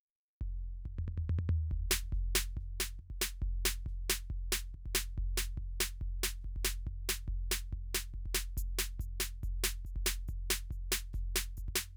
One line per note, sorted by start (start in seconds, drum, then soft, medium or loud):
0.41 kick soft
0.86 kick soft
0.98 floor tom medium
1.08 floor tom medium
1.18 floor tom medium
1.29 floor tom loud
1.39 floor tom loud
1.49 floor tom loud
1.71 kick medium
1.91 snare loud
2.12 kick medium
2.12 snare soft
2.35 snare loud
2.57 kick soft
2.57 snare soft
2.80 snare medium
2.99 kick soft
3.10 kick soft
3.21 snare loud
3.42 kick medium
3.65 snare loud
3.86 kick soft
3.86 snare soft
4.10 snare loud
4.30 kick soft
4.52 snare loud
4.74 kick soft
4.86 kick soft
4.95 snare loud
5.18 kick soft
5.37 snare medium
5.57 kick soft
5.80 snare loud
6.01 kick soft
6.23 snare loud
6.41 kick soft
6.41 snare soft
6.56 kick soft
6.65 snare loud
6.87 kick soft
7.09 snare loud
7.28 kick soft
7.51 snare loud
7.73 kick soft
7.95 snare medium
8.14 kick soft
8.26 kick soft
8.35 snare loud
8.57 closed hi-hat medium
8.57 kick soft
8.79 closed hi-hat medium
8.79 snare medium
9.00 kick soft
9.00 closed hi-hat medium
9.20 closed hi-hat medium
9.20 snare medium
9.43 kick soft
9.43 closed hi-hat soft
9.64 closed hi-hat medium
9.64 snare loud
9.85 kick soft
9.85 closed hi-hat soft
9.96 kick soft
10.06 closed hi-hat medium
10.06 snare loud
10.28 kick soft
10.28 closed hi-hat soft
10.50 closed hi-hat medium
10.50 snare loud
10.71 kick soft
10.71 closed hi-hat soft
10.92 closed hi-hat medium
10.92 snare loud
11.13 kick soft
11.13 snare soft
11.13 closed hi-hat soft
11.36 closed hi-hat medium
11.36 snare loud
11.57 closed hi-hat soft
11.57 kick soft
11.68 kick soft
11.76 closed hi-hat medium
11.76 snare loud